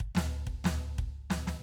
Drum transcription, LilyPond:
\new DrumStaff \drummode { \time 4/4 \tempo 4 = 122 \tuplet 3/2 { bd8 <tomfh sn>8 r8 bd8 <tomfh sn>8 r8 bd8 r8 <tomfh sn>8 } <sn tomfh>4 | }